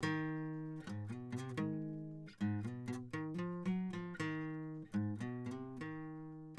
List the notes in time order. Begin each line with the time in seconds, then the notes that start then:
0.04 D#3
0.88 G#2
1.11 B2
1.33 C3
1.58 D#3 G#3
2.42 G#2
2.66 B2
2.89 B2
3.14 D#3
3.36 F3
3.67 F#3
3.95 F3
4.21 D#3
4.95 G#2
5.22 B2
5.53 C3
5.82 D#3